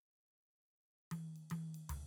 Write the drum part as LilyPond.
\new DrumStaff \drummode { \time 4/4 \tempo 4 = 110 r4 r4 <tommh cymr>8 cymr16 <cymr tommh>16 r16 cymr16 <tomfh cymr>8 | }